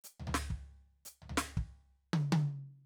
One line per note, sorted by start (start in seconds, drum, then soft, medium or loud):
0.04 hi-hat pedal medium
0.19 floor tom medium
0.27 floor tom medium
0.34 snare medium
0.50 kick soft
1.05 hi-hat pedal medium
1.22 floor tom soft
1.29 floor tom medium
1.37 snare loud
1.57 kick medium
2.13 high tom loud
2.32 high tom loud